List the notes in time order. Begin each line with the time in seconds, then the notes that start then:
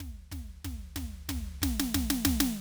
0.00 kick, snare, floor tom
0.31 kick, snare, floor tom
0.64 kick, snare, floor tom
0.96 kick, snare, floor tom
1.29 kick, snare, floor tom
1.62 kick, snare
1.79 snare
1.94 kick, snare
2.10 snare
2.25 kick, snare
2.40 snare